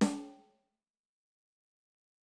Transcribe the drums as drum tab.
HH |x-------|
SD |o-------|